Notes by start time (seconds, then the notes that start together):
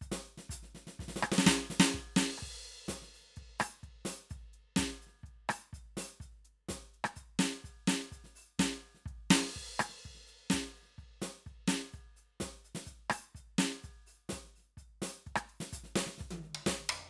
0.01 closed hi-hat, kick
0.12 snare
0.25 open hi-hat
0.37 snare
0.49 closed hi-hat, kick
0.63 snare
0.75 snare
0.87 snare
0.99 kick, snare
1.08 snare
1.16 snare
1.23 cross-stick
1.32 snare
1.38 snare
1.44 kick, snare, hi-hat pedal
1.70 snare
1.80 snare
1.94 kick
2.16 snare, crash
2.38 cross-stick
2.42 kick
2.64 open hi-hat
2.88 closed hi-hat, kick, snare
3.02 snare
3.13 open hi-hat
3.21 snare
3.26 snare
3.29 snare
3.36 kick, closed hi-hat
3.59 open hi-hat, cross-stick
3.83 kick, closed hi-hat
4.05 open hi-hat, snare
4.29 closed hi-hat, kick
4.38 snare
4.43 snare
4.53 open hi-hat
4.76 closed hi-hat, kick, snare
4.88 snare
5.01 open hi-hat
5.06 snare
5.12 snare
5.16 snare
5.18 snare
5.23 kick, closed hi-hat
5.49 open hi-hat, cross-stick
5.73 closed hi-hat, kick
5.97 open hi-hat, snare
6.20 closed hi-hat, kick
6.31 snare
6.35 snare
6.45 open hi-hat
6.69 closed hi-hat, kick, snare
6.93 open hi-hat
7.04 cross-stick
7.15 closed hi-hat, kick
7.39 open hi-hat, snare
7.64 closed hi-hat, kick
7.87 open hi-hat, snare
8.12 closed hi-hat, kick
8.24 snare
8.28 snare
8.31 open hi-hat, snare
8.59 closed hi-hat, kick, snare
8.73 snare
8.84 open hi-hat
8.95 snare
9.03 kick, snare
9.07 closed hi-hat
9.30 snare, crash
9.56 kick
9.79 open hi-hat, cross-stick
9.89 snare
10.03 kick, open hi-hat
10.15 snare
10.18 snare
10.22 snare
10.26 open hi-hat
10.50 open hi-hat, kick, snare
10.74 open hi-hat
10.83 snare
10.87 snare
10.90 snare
10.98 closed hi-hat, kick
11.21 open hi-hat, snare
11.46 closed hi-hat, kick
11.67 closed hi-hat, snare
11.91 open hi-hat, kick, snare
11.97 snare
12.16 open hi-hat
12.40 closed hi-hat, kick, snare
12.64 open hi-hat
12.75 snare
12.86 closed hi-hat, kick
13.10 open hi-hat, cross-stick
13.35 closed hi-hat, kick
13.58 open hi-hat, snare
13.83 closed hi-hat, kick, snare
13.89 snare
14.06 open hi-hat
14.29 open hi-hat, kick, snare
14.45 snare
14.55 open hi-hat, snare
14.61 snare
14.63 snare
14.77 closed hi-hat, kick
15.02 open hi-hat, snare
15.26 kick, open hi-hat
15.36 cross-stick
15.49 open hi-hat
15.60 snare
15.72 closed hi-hat, kick
15.84 snare
15.96 snare
16.07 snare
16.18 kick, snare
16.30 high tom
16.43 snare
16.55 high tom
16.66 kick, snare
16.89 floor tom